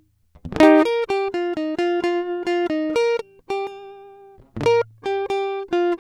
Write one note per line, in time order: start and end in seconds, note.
0.62 0.94 D#4
0.62 0.85 G4
0.87 1.07 A#4
1.12 1.34 G4
1.36 1.56 F4
1.59 1.78 D#4
1.80 2.04 F4
2.06 2.46 F4
2.48 2.68 F4
2.68 3.01 D#4
2.97 3.18 A#4
3.18 3.44 G4
3.52 3.69 G4
4.58 4.70 A2
4.62 4.73 D3
4.67 4.87 A#4
5.08 5.29 G4
5.32 5.73 G4
5.74 5.99 F4